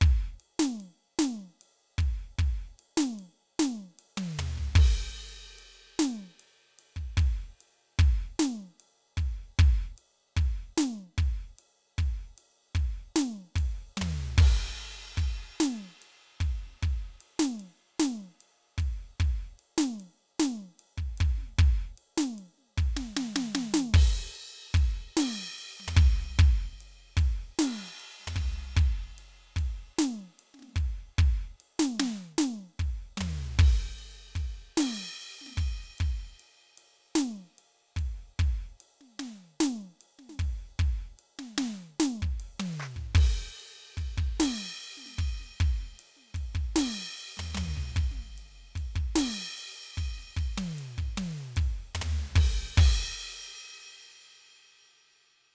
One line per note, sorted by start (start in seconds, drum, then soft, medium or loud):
0.01 kick loud
0.01 ride soft
0.25 snare soft
0.40 ride soft
0.59 snare loud
0.80 ride soft
1.19 snare loud
1.19 ride medium
1.33 snare soft
1.61 ride medium
1.98 kick medium
1.98 ride medium
2.39 kick medium
2.39 ride medium
2.68 snare soft
2.79 ride soft
2.97 snare loud
3.11 snare soft
3.16 snare soft
3.16 ride soft
3.59 snare loud
3.59 ride medium
3.99 ride medium
4.17 high tom loud
4.39 floor tom loud
4.58 kick soft
4.75 kick loud
4.75 ride medium
4.75 crash medium
5.21 ride soft
5.58 ride medium
5.99 snare loud
5.99 ride medium
6.40 ride medium
6.79 ride medium
6.96 kick soft
7.17 kick medium
7.17 ride medium
7.61 ride medium
7.99 kick loud
7.99 ride medium
8.39 snare loud
8.39 ride medium
8.80 ride medium
9.17 kick medium
9.17 ride medium
9.59 kick loud
9.59 ride medium
9.98 ride medium
10.37 kick medium
10.37 ride medium
10.78 snare loud
11.18 kick medium
11.18 ride medium
11.59 ride medium
11.98 kick medium
11.98 ride medium
12.38 ride medium
12.75 kick medium
12.75 ride medium
13.16 snare loud
13.16 ride medium
13.55 kick medium
13.55 ride medium
13.97 high tom loud
14.01 floor tom loud
14.38 kick loud
14.38 crash medium
14.78 ride soft
15.17 kick medium
15.17 ride medium
15.60 snare loud
15.60 ride medium
16.02 ride medium
16.40 kick medium
16.40 ride medium
16.66 snare soft
16.70 snare soft
16.82 kick medium
16.82 ride medium
17.21 ride medium
17.39 snare loud
17.54 snare soft
17.58 snare soft
17.58 ride medium
18.00 snare loud
18.00 ride medium
18.41 ride medium
18.78 kick medium
18.78 ride medium
18.97 snare soft
19.20 kick medium
19.20 ride medium
19.59 ride soft
19.78 snare loud
19.92 snare soft
20.00 ride medium
20.39 snare loud
20.39 ride medium
20.79 ride medium
20.98 kick medium
21.18 kick medium
21.18 ride medium
21.38 snare soft
21.40 snare soft
21.59 kick loud
21.59 ride medium
21.76 snare soft
21.98 ride soft
22.18 snare loud
22.38 ride medium
22.57 snare soft
22.78 kick medium
22.78 ride medium
22.96 snare medium
23.16 snare loud
23.36 snare loud
23.55 snare loud
23.74 snare loud
23.94 kick loud
23.94 crash medium
24.21 kick soft
24.35 ride soft
24.74 kick loud
24.74 ride medium
25.17 snare loud
25.17 crash loud
25.32 snare soft
25.59 ride medium
25.80 high tom soft
25.88 floor tom loud
25.96 kick loud
26.39 kick loud
26.39 ride medium
26.80 ride medium
27.17 kick medium
27.17 ride medium
27.59 snare loud
27.59 crash medium
27.73 snare soft
28.00 ride medium
28.20 high tom soft
28.27 floor tom loud
28.36 kick medium
28.77 kick loud
28.77 ride medium
29.18 ride medium
29.56 kick medium
29.56 ride medium
29.98 snare loud
29.98 ride medium
30.37 snare soft
30.37 ride medium
30.54 snare soft
30.59 snare soft
30.62 snare soft
30.76 kick medium
30.76 ride medium
31.18 kick loud
31.18 ride medium
31.60 ride soft
31.79 snare loud
32.00 snare loud
32.38 snare loud
32.38 ride medium
32.79 kick medium
32.79 ride medium
33.17 floor tom loud
33.17 high tom loud
33.59 kick loud
33.59 ride medium
33.59 crash medium
33.98 ride soft
34.35 kick medium
34.35 ride medium
34.77 snare loud
34.77 crash medium
35.21 ride medium
35.41 snare soft
35.46 snare soft
35.50 snare soft
35.57 kick medium
35.57 ride medium
35.98 kick medium
35.98 ride medium
36.20 snare soft
36.40 ride medium
36.77 ride medium
37.15 snare loud
37.15 ride medium
37.58 ride medium
37.96 kick medium
37.96 ride medium
38.19 snare soft
38.39 kick medium
38.39 ride medium
38.80 ride medium
39.01 snare soft
39.19 snare medium
39.19 ride medium
39.60 snare loud
39.60 ride medium
39.74 snare soft
40.01 ride medium
40.19 snare soft
40.29 snare soft
40.39 kick medium
40.39 ride medium
40.79 kick medium
40.79 ride medium
40.99 snare soft
41.19 ride medium
41.39 snare medium
41.58 snare loud
41.58 ride medium
42.00 snare loud
42.00 ride medium
42.22 kick medium
42.40 ride medium
42.59 high tom loud
42.78 percussion medium
42.78 hi-hat pedal medium
42.96 kick soft
43.15 kick loud
43.15 ride medium
43.15 crash medium
43.60 ride soft
43.97 kick medium
43.97 ride medium
44.18 kick medium
44.40 snare loud
44.40 crash loud
44.80 ride medium
44.97 snare soft
45.06 snare soft
45.18 kick medium
45.18 ride medium
45.40 snare soft
45.60 kick medium
45.60 ride medium
45.80 snare soft
45.99 ride medium
46.16 snare soft
46.34 kick medium
46.34 ride medium
46.55 kick medium
46.76 snare loud
46.76 crash loud
47.18 ride medium
47.37 floor tom loud
47.37 high tom soft
47.55 floor tom loud
47.55 high tom loud
47.77 kick soft
47.96 kick medium
47.96 ride medium
48.11 snare soft
48.19 snare soft
48.38 ride medium
48.57 snare soft
48.75 kick medium
48.75 ride medium
48.95 kick medium
49.16 snare loud
49.16 crash loud
49.58 ride medium
49.97 kick medium
49.97 ride medium
50.16 snare soft
50.37 kick medium
50.37 ride soft
50.58 high tom loud
50.78 ride medium
50.98 kick medium
51.17 high tom loud
51.17 ride medium
51.56 kick medium
51.56 ride medium
51.95 floor tom loud
52.01 floor tom loud
52.36 kick loud
52.36 crash medium
52.77 kick loud
52.77 crash loud